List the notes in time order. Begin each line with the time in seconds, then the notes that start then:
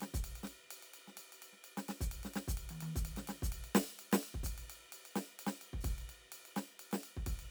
0.01 snare, ride
0.14 kick, hi-hat pedal
0.24 ride
0.36 ride
0.44 snare, ride
0.71 ride
0.83 ride
0.94 ride
1.08 snare
1.16 snare, ride
1.33 ride
1.42 ride
1.53 snare
1.64 ride
1.77 snare, ride
1.89 snare, ride
2.01 kick, hi-hat pedal
2.12 ride
2.23 snare, ride
2.34 snare, ride
2.48 kick, hi-hat pedal
2.57 ride
2.69 high tom, ride
2.81 high tom, ride
2.96 kick, hi-hat pedal
3.05 ride
3.17 snare, ride
3.28 snare, ride
3.43 kick, hi-hat pedal
3.52 ride
3.64 ride
3.75 snare, ride
3.99 ride
4.12 snare, ride
4.23 ride
4.34 kick
4.43 kick, hi-hat pedal, ride
4.58 ride
4.70 ride
4.93 ride
5.06 ride
5.16 snare, ride
5.39 ride
5.47 snare, ride
5.62 ride
5.73 kick
5.81 kick, hi-hat pedal, ride
5.98 ride
6.09 ride
6.32 ride
6.46 ride
6.56 snare, ride
6.80 ride
6.92 snare, ride
7.04 ride
7.17 kick
7.27 kick, ride
7.39 ride